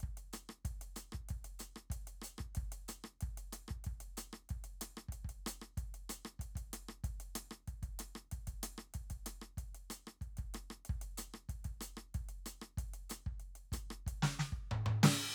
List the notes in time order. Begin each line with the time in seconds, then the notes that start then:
0.01 kick, closed hi-hat
0.18 closed hi-hat
0.34 closed hi-hat, cross-stick
0.50 cross-stick
0.66 kick, closed hi-hat
0.82 closed hi-hat
0.97 closed hi-hat, cross-stick
1.13 kick, cross-stick
1.30 kick, closed hi-hat
1.45 closed hi-hat
1.60 closed hi-hat, cross-stick
1.77 cross-stick
1.91 kick, closed hi-hat
2.08 closed hi-hat
2.23 closed hi-hat, cross-stick
2.39 kick, cross-stick
2.56 kick, closed hi-hat
2.73 closed hi-hat
2.89 closed hi-hat, cross-stick
3.05 cross-stick
3.22 kick, closed hi-hat
3.38 closed hi-hat
3.53 cross-stick, closed hi-hat
3.69 kick, cross-stick
3.85 kick, closed hi-hat
4.01 closed hi-hat
4.18 closed hi-hat, cross-stick
4.34 cross-stick
4.50 kick, closed hi-hat
4.65 closed hi-hat
4.82 cross-stick, closed hi-hat
4.98 cross-stick
5.09 kick, closed hi-hat
5.25 kick
5.30 closed hi-hat
5.47 closed hi-hat, cross-stick
5.63 cross-stick
5.78 kick, closed hi-hat
5.95 closed hi-hat
6.10 closed hi-hat, cross-stick
6.26 cross-stick
6.40 kick, closed hi-hat
6.56 kick, closed hi-hat
6.74 cross-stick, closed hi-hat
6.89 cross-stick
7.05 kick, closed hi-hat
7.21 closed hi-hat
7.36 cross-stick, closed hi-hat
7.52 cross-stick
7.68 kick, closed hi-hat
7.84 kick, closed hi-hat
8.00 cross-stick, closed hi-hat
8.16 cross-stick
8.32 kick, closed hi-hat
8.48 kick, closed hi-hat
8.64 cross-stick, closed hi-hat
8.79 cross-stick
8.95 kick, closed hi-hat
9.11 kick, closed hi-hat
9.27 cross-stick, closed hi-hat
9.42 cross-stick
9.58 kick, closed hi-hat
9.75 closed hi-hat
9.91 closed hi-hat, cross-stick
10.08 cross-stick
10.22 kick, closed hi-hat
10.38 kick, closed hi-hat
10.55 cross-stick, closed hi-hat
10.71 cross-stick
10.86 closed hi-hat
10.90 kick
11.02 closed hi-hat
11.18 closed hi-hat, cross-stick
11.35 cross-stick
11.50 kick, closed hi-hat
11.65 kick, closed hi-hat
11.82 closed hi-hat, cross-stick
11.98 cross-stick
12.15 kick, closed hi-hat
12.30 closed hi-hat
12.47 closed hi-hat, cross-stick
12.63 cross-stick
12.78 kick, closed hi-hat
12.94 closed hi-hat
13.11 closed hi-hat, cross-stick
13.27 kick
13.41 closed hi-hat
13.56 closed hi-hat
13.73 closed hi-hat, kick, cross-stick
13.91 cross-stick
14.07 kick, closed hi-hat
14.23 snare
14.40 snare
14.53 kick
14.72 high tom
14.87 high tom
15.04 snare, crash